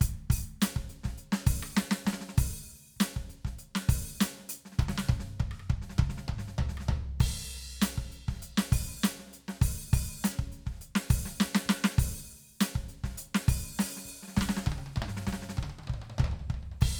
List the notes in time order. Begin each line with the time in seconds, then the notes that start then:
0.01 closed hi-hat, kick
0.30 open hi-hat, kick
0.61 closed hi-hat, snare, hi-hat pedal
0.76 kick, snare
0.89 closed hi-hat
1.03 kick, snare
1.06 snare
1.09 snare
1.18 closed hi-hat
1.32 snare
1.47 open hi-hat, kick
1.63 cross-stick
1.77 snare, hi-hat pedal
1.91 snare
2.05 kick, snare
2.13 snare
2.21 snare
2.29 snare
2.34 kick
2.38 open hi-hat, kick
2.96 open hi-hat, kick, snare
3.03 hi-hat pedal
3.16 kick
3.30 closed hi-hat
3.45 kick, snare
3.59 closed hi-hat
3.75 snare
3.89 open hi-hat, kick
4.19 closed hi-hat, snare, hi-hat pedal
4.39 snare
4.49 closed hi-hat
4.65 snare
4.72 snare
4.79 kick, hi-hat pedal, high tom
4.88 snare
4.98 snare
5.09 kick, mid tom
5.20 snare
5.40 kick, floor tom
5.51 cross-stick
5.60 cross-stick
5.70 kick, mid tom
5.82 snare
5.90 snare
5.98 kick, high tom
6.09 snare
6.18 snare
6.28 kick, mid tom
6.38 snare
6.48 snare
6.53 snare
6.58 kick, floor tom
6.69 snare
6.77 cross-stick, snare
6.88 kick, floor tom
7.20 kick, hi-hat pedal, crash
7.82 closed hi-hat, snare
7.98 kick
8.12 closed hi-hat
8.28 kick, snare
8.33 snare
8.36 snare
8.39 closed hi-hat, snare
8.58 snare
8.72 open hi-hat, kick
9.04 open hi-hat, snare, hi-hat pedal
9.19 snare
9.23 snare
9.27 snare
9.29 snare
9.33 closed hi-hat
9.48 snare
9.62 open hi-hat, kick
9.93 open hi-hat, kick
10.23 closed hi-hat, snare, hi-hat pedal
10.39 kick
10.44 snare
10.52 closed hi-hat
10.66 kick, snare
10.71 snare
10.75 snare
10.81 closed hi-hat
10.95 snare
11.10 open hi-hat, kick
11.25 snare
11.38 snare, hi-hat pedal
11.55 snare
11.66 kick, snare
11.84 snare
11.98 open hi-hat, kick
12.50 kick
12.60 open hi-hat, snare, hi-hat pedal
12.75 kick
12.88 closed hi-hat
13.04 kick, snare
13.09 snare
13.14 closed hi-hat, snare
13.35 snare
13.48 open hi-hat, kick, snare
13.79 open hi-hat, snare
13.97 snare
14.05 open hi-hat, kick
14.23 snare
14.28 snare
14.31 snare
14.37 kick, snare
14.41 snare
14.49 snare
14.57 snare
14.66 kick, high tom
14.72 high tom
14.78 high tom
14.86 high tom
14.91 high tom
14.96 kick, mid tom
15.02 mid tom
15.08 snare
15.17 snare
15.21 snare
15.27 kick, snare
15.33 snare
15.42 snare
15.49 snare
15.57 kick, high tom
15.63 high tom
15.67 high tom
15.70 high tom
15.79 high tom
15.84 mid tom, high tom
15.89 kick
15.94 mid tom
15.98 mid tom
16.02 mid tom
16.10 mid tom
16.18 kick, floor tom
16.24 floor tom
16.28 floor tom
16.32 floor tom
16.39 floor tom
16.50 kick, floor tom
16.54 floor tom
16.63 floor tom
16.72 floor tom
16.79 kick, crash
16.82 kick